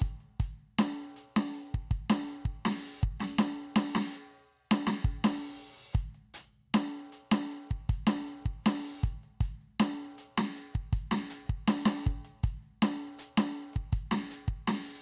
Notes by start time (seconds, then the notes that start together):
0.01 closed hi-hat, kick, hi-hat pedal
0.21 closed hi-hat
0.41 closed hi-hat, kick
0.59 closed hi-hat
0.80 closed hi-hat, snare
1.17 closed hi-hat
1.37 closed hi-hat, snare
1.54 closed hi-hat
1.72 kick, closed hi-hat
1.92 closed hi-hat, kick
2.11 snare, closed hi-hat
2.29 closed hi-hat
2.46 kick, closed hi-hat
2.66 open hi-hat, snare
3.02 kick, hi-hat pedal
3.21 snare, closed hi-hat
3.39 open hi-hat, snare
3.77 open hi-hat, snare
3.96 open hi-hat, snare
4.15 hi-hat pedal
4.72 closed hi-hat, snare
4.88 closed hi-hat, snare
5.05 kick
5.25 open hi-hat, snare
5.94 closed hi-hat, kick, hi-hat pedal
6.15 closed hi-hat
6.35 closed hi-hat
6.53 closed hi-hat
6.75 closed hi-hat, snare
6.95 closed hi-hat
7.13 closed hi-hat
7.32 snare, closed hi-hat
7.51 closed hi-hat
7.71 kick, closed hi-hat
7.90 closed hi-hat, kick
8.08 snare
8.27 closed hi-hat
8.46 kick, closed hi-hat
8.64 open hi-hat, snare, hi-hat pedal
9.03 closed hi-hat, kick, hi-hat pedal
9.24 closed hi-hat
9.41 closed hi-hat, kick
9.62 closed hi-hat
9.81 closed hi-hat, snare
10.19 closed hi-hat
10.38 snare
10.56 closed hi-hat
10.74 kick, closed hi-hat
10.93 closed hi-hat, kick
11.12 snare, closed hi-hat
11.31 closed hi-hat
11.47 kick, closed hi-hat
11.68 open hi-hat, snare
11.86 open hi-hat, snare
12.06 kick, hi-hat pedal
12.25 closed hi-hat
12.44 closed hi-hat, kick
12.63 closed hi-hat
12.83 closed hi-hat, snare
13.02 closed hi-hat
13.19 closed hi-hat
13.38 snare, closed hi-hat
13.56 closed hi-hat
13.74 kick, closed hi-hat
13.93 closed hi-hat, kick
14.12 snare
14.31 closed hi-hat
14.49 kick, closed hi-hat
14.68 open hi-hat, snare